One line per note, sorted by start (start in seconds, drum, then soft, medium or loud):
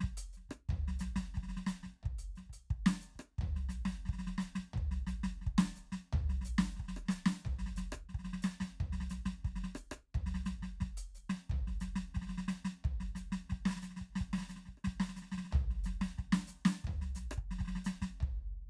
0.01 kick soft
0.01 snare medium
0.17 closed hi-hat medium
0.33 hi-hat pedal soft
0.37 snare soft
0.49 kick soft
0.49 cross-stick medium
0.69 kick soft
0.69 floor tom loud
0.88 snare soft
0.99 snare soft
0.99 hi-hat pedal medium
1.16 kick soft
1.16 snare medium
1.34 kick soft
1.34 snare soft
1.43 snare soft
1.49 snare soft
1.57 snare soft
1.67 snare medium
1.67 hi-hat pedal medium
1.83 kick soft
1.83 snare soft
2.03 kick soft
2.03 floor tom medium
2.19 closed hi-hat medium
2.36 snare soft
2.36 hi-hat pedal soft
2.50 closed hi-hat medium
2.50 kick soft
2.71 kick soft
2.71 snare soft
2.86 snare loud
3.01 snare soft
3.01 hi-hat pedal soft
3.15 kick soft
3.15 cross-stick medium
3.38 kick soft
3.38 floor tom loud
3.56 snare soft
3.69 snare soft
3.69 hi-hat pedal medium
3.85 kick soft
3.85 snare medium
4.05 kick soft
4.05 snare soft
4.13 snare soft
4.19 snare soft
4.27 snare soft
4.38 snare medium
4.38 hi-hat pedal soft
4.55 kick soft
4.55 snare medium
4.74 kick soft
4.74 floor tom loud
4.91 snare soft
5.07 snare medium
5.07 hi-hat pedal soft
5.24 kick soft
5.24 snare medium
5.41 snare soft
5.47 kick soft
5.58 snare loud
5.66 snare soft
5.76 snare soft
5.76 hi-hat pedal soft
5.92 kick soft
5.92 snare medium
6.13 kick soft
6.13 floor tom loud
6.29 snare soft
6.41 snare soft
6.41 hi-hat pedal medium
6.58 kick soft
6.58 snare medium
6.76 kick soft
6.76 snare soft
6.84 snare soft
6.88 snare medium
6.97 cross-stick medium
7.05 snare soft
7.09 snare medium
7.09 hi-hat pedal medium
7.26 kick soft
7.26 snare medium
7.45 kick soft
7.45 floor tom medium
7.59 snare soft
7.66 snare soft
7.76 snare medium
7.76 hi-hat pedal medium
7.92 kick soft
7.92 cross-stick medium
8.09 snare soft
8.14 kick soft
8.19 snare soft
8.24 snare soft
8.33 snare soft
8.42 snare medium
8.42 hi-hat pedal medium
8.60 kick soft
8.60 snare medium
8.80 kick soft
8.80 floor tom medium
8.93 snare soft
9.00 snare soft
9.10 snare soft
9.10 hi-hat pedal medium
9.26 kick soft
9.26 snare medium
9.45 kick soft
9.45 snare soft
9.64 snare soft
9.75 cross-stick medium
9.75 hi-hat pedal medium
9.91 kick soft
9.91 cross-stick medium
10.15 kick soft
10.15 floor tom medium
10.26 snare soft
10.34 snare soft
10.44 snare soft
10.44 hi-hat pedal soft
10.46 snare medium
10.62 kick soft
10.62 snare soft
10.80 kick soft
10.80 snare soft
10.97 closed hi-hat medium
11.15 snare soft
11.15 hi-hat pedal soft
11.30 kick soft
11.30 snare medium
11.50 kick soft
11.50 floor tom loud
11.67 snare soft
11.80 snare soft
11.80 hi-hat pedal medium
11.96 kick soft
11.96 snare medium
12.14 kick soft
12.14 snare soft
12.22 snare soft
12.27 snare soft
12.29 snare soft
12.38 snare medium
12.48 snare medium
12.48 hi-hat pedal soft
12.64 kick soft
12.64 snare medium
12.84 kick soft
12.84 floor tom medium
13.00 snare soft
13.15 snare soft
13.15 hi-hat pedal medium
13.31 kick soft
13.31 snare medium
13.50 kick soft
13.50 snare soft
13.66 snare loud
13.69 snare medium
13.71 snare medium
13.76 snare medium
13.82 snare soft
13.82 hi-hat pedal medium
13.91 snare soft
13.97 snare medium
14.01 kick soft
14.13 snare soft
14.16 snare medium
14.21 kick soft
14.33 snare medium
14.38 snare medium
14.41 snare medium
14.44 snare soft
14.49 snare soft
14.49 hi-hat pedal soft
14.56 snare soft
14.66 kick soft
14.66 snare soft
14.77 cross-stick soft
14.84 kick soft
14.84 snare medium
15.00 snare medium
15.09 snare medium
15.16 snare soft
15.16 hi-hat pedal soft
15.22 snare soft
15.26 snare soft
15.32 kick soft
15.32 snare medium
15.38 snare medium
15.45 snare soft
15.51 kick soft
15.51 snare soft
15.51 floor tom loud
15.70 snare soft
15.74 snare soft
15.78 snare soft
15.84 snare soft
15.84 hi-hat pedal medium
16.00 kick soft
16.00 snare medium
16.18 kick soft
16.18 snare soft
16.33 snare medium
16.47 snare soft
16.47 hi-hat pedal medium
16.65 kick soft
16.65 snare loud
16.84 kick soft
16.84 floor tom medium
17.02 snare soft
17.15 snare soft
17.15 hi-hat pedal medium
17.31 cross-stick medium
17.38 kick soft
17.51 snare soft
17.59 kick soft
17.59 snare soft
17.65 snare soft
17.68 snare medium
17.75 snare soft
17.85 snare medium
17.85 hi-hat pedal medium
18.02 kick soft
18.02 snare medium
18.21 kick soft
18.21 floor tom medium